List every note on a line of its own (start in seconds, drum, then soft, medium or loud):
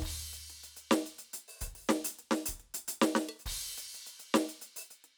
0.01 kick soft
0.01 hi-hat pedal medium
0.05 kick soft
0.05 crash loud
0.21 closed hi-hat soft
0.33 closed hi-hat medium
0.50 closed hi-hat soft
0.64 closed hi-hat medium
0.77 closed hi-hat medium
0.92 snare loud
1.06 closed hi-hat medium
1.19 closed hi-hat medium
1.34 closed hi-hat medium
1.48 open hi-hat medium
1.61 open hi-hat loud
1.61 kick soft
1.61 hi-hat pedal soft
1.68 kick soft
1.72 kick soft
1.72 open hi-hat medium
1.89 snare loud
2.05 closed hi-hat loud
2.19 closed hi-hat medium
2.32 snare loud
2.46 closed hi-hat loud
2.46 kick soft
2.60 closed hi-hat soft
2.75 closed hi-hat loud
2.88 closed hi-hat loud
3.02 snare loud
3.16 snare loud
3.25 snare soft
3.29 percussion medium
3.40 hi-hat pedal medium
3.46 kick soft
3.46 crash loud
3.52 kick soft
3.78 closed hi-hat medium
3.95 closed hi-hat medium
4.07 closed hi-hat medium
4.20 closed hi-hat medium
4.35 snare loud
4.49 closed hi-hat medium
4.62 closed hi-hat medium
4.77 open hi-hat loud
4.91 closed hi-hat soft
5.05 closed hi-hat soft